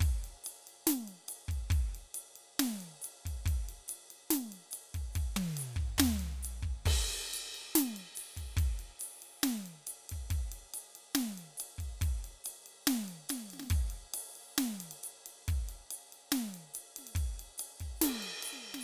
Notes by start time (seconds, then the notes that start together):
0.01 kick, ride
0.25 ride
0.44 hi-hat pedal, ride
0.68 ride
0.87 snare, ride
1.08 ride
1.29 hi-hat pedal, ride
1.49 kick, ride
1.71 kick, ride
1.95 ride
2.15 hi-hat pedal, ride
2.36 ride
2.60 snare, ride
2.81 ride
3.02 hi-hat pedal, ride
3.26 kick, ride
3.46 kick, hi-hat pedal, ride
3.69 ride
3.88 hi-hat pedal, ride
4.11 ride
4.28 snare, hi-hat pedal, ride
4.53 ride
4.71 hi-hat pedal, ride
4.95 kick, ride
5.13 kick, hi-hat pedal, ride
5.37 high tom, ride
5.57 hi-hat pedal, ride
5.77 kick
5.99 snare, floor tom
6.20 ride
6.43 hi-hat pedal, ride
6.63 kick
6.86 kick, hi-hat pedal, crash, ride
7.10 ride
7.34 hi-hat pedal, ride
7.55 ride
7.75 snare, hi-hat pedal, ride
7.97 ride
8.16 hi-hat pedal, ride
8.37 kick, ride
8.56 kick, hi-hat pedal, ride
8.80 ride
9.00 hi-hat pedal, ride
9.23 ride
9.42 snare, hi-hat pedal, ride
9.66 ride
9.87 hi-hat pedal, ride
10.07 hi-hat pedal, ride
10.12 kick
10.31 kick, hi-hat pedal, ride
10.52 ride
10.74 hi-hat pedal, ride
10.96 ride
11.13 snare, hi-hat pedal, ride
11.38 ride
11.58 hi-hat pedal, ride
11.79 kick, ride
12.01 kick, hi-hat pedal, ride
12.25 ride
12.45 hi-hat pedal, ride
12.66 ride
12.82 hi-hat pedal
12.88 snare, ride
13.09 ride
13.29 snare, hi-hat pedal, ride
13.51 snare, ride
13.60 snare
13.63 snare
13.69 kick, hi-hat pedal, ride
13.91 ride
14.14 hi-hat pedal, ride
14.36 ride
14.55 snare, hi-hat pedal, ride
14.81 ride
14.92 ride
15.04 hi-hat pedal, ride
15.26 ride
15.46 kick, hi-hat pedal, ride
15.67 hi-hat pedal, ride
15.91 hi-hat pedal, ride
16.13 ride
16.31 snare, hi-hat pedal, ride
16.55 ride
16.74 hi-hat pedal, ride
16.97 snare, ride
17.07 ride
17.15 kick, hi-hat pedal, ride
17.40 ride
17.58 hi-hat pedal, ride
17.80 kick, ride
17.96 hi-hat pedal
18.02 snare, ride
18.23 ride
18.43 hi-hat pedal, ride
18.53 snare
18.75 snare
18.81 hi-hat pedal